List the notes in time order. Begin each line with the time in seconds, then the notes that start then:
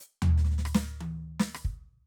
0.00 hi-hat pedal
0.22 floor tom
0.38 snare
0.45 snare
0.51 snare
0.58 snare
0.65 cross-stick
0.75 snare
1.00 closed hi-hat, high tom
1.40 snare
1.55 cross-stick
1.64 kick